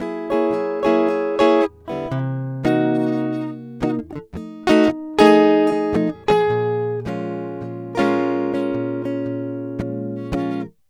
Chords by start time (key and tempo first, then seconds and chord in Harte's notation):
A# minor, 110 BPM
0.00 F#:9
2.17 C:7(b5,#9,*5)
4.36 F:7(#9,*5)
6.54 A#:min7